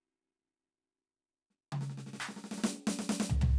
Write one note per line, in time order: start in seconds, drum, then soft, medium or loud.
1.50 snare soft
1.72 high tom loud
1.81 snare medium
1.90 snare soft
1.97 snare medium
2.06 snare medium
2.13 snare medium
2.20 percussion loud
2.29 snare medium
2.36 snare medium
2.44 snare medium
2.51 snare medium
2.58 snare medium
2.64 snare loud
2.87 snare loud
2.99 snare medium
3.09 snare loud
3.20 snare loud
3.29 floor tom loud
3.41 floor tom loud